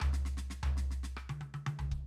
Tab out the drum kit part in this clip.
Hi-hat    |----------x-----|
Snare     |rgggg-gggr------|
High tom  |----------oooo--|
Floor tom |o----o--------o-|
Kick      |---------------g|